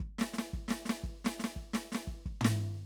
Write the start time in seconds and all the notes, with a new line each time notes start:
0.00 kick
0.19 snare
0.21 snare
0.34 snare
0.39 snare
0.54 kick
0.68 snare
0.71 snare
0.85 snare
0.89 snare
1.04 kick
1.25 snare
1.26 snare
1.40 snare
1.44 snare
1.56 kick
1.74 snare
1.92 snare
1.95 snare
2.08 kick
2.26 kick
2.41 snare, floor tom